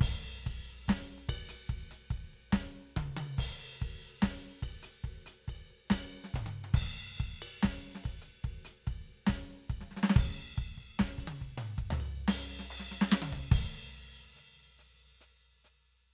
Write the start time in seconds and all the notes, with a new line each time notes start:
0.01 kick, crash
0.44 kick, hi-hat pedal, ride bell
0.68 ride
0.85 kick, hi-hat pedal
0.89 snare, ride bell
1.11 ride
1.18 closed hi-hat
1.29 kick, ride bell
1.49 closed hi-hat
1.69 kick, ride
1.91 closed hi-hat
2.11 kick, ride bell
2.34 ride
2.50 kick, snare, hi-hat pedal
2.55 ride bell
2.76 ride
2.97 kick, high tom, ride
3.17 high tom, ride bell
3.37 kick, hi-hat pedal, crash
3.60 ride
3.80 kick, hi-hat pedal, ride
4.02 ride
4.21 kick, snare, hi-hat pedal, ride bell
4.43 ride bell
4.53 open hi-hat
4.59 kick, hi-hat pedal
4.64 ride bell
4.83 closed hi-hat
5.04 kick, ride
5.26 open hi-hat
5.44 kick, hi-hat pedal
5.50 ride bell
5.71 ride
5.88 kick, snare, hi-hat pedal
5.92 ride bell
6.14 ride
6.24 snare
6.34 kick, hi-hat pedal, mid tom
6.46 high tom
6.64 high tom
6.74 kick, crash
7.17 kick, hi-hat pedal
7.42 ride bell
7.62 kick, snare, hi-hat pedal
7.85 ride
7.95 snare
8.04 kick, hi-hat pedal, ride bell
8.22 closed hi-hat
8.42 kick, hi-hat pedal, ride
8.65 closed hi-hat
8.85 kick, hi-hat pedal, ride bell
9.08 ride
9.26 kick, snare, hi-hat pedal, ride bell
9.51 ride
9.68 kick, hi-hat pedal, ride bell
9.81 snare
9.91 snare
9.97 snare
10.03 snare
10.10 snare
10.16 kick, crash
10.55 kick, hi-hat pedal
10.78 kick, snare, floor tom, mid tom, ride
10.99 kick, snare, hi-hat pedal
11.18 kick, ride bell
11.28 high tom
11.40 kick, hi-hat pedal
11.58 mid tom, ride bell
11.78 kick, hi-hat pedal
11.91 floor tom
12.00 ride bell
12.28 snare, crash
12.59 snare
12.70 crash
12.80 snare
12.91 snare
13.01 snare
13.12 snare, hi-hat pedal
13.22 high tom
13.32 kick, floor tom
13.42 open hi-hat
13.52 kick, crash
14.36 hi-hat pedal
14.79 hi-hat pedal
15.21 hi-hat pedal
15.65 hi-hat pedal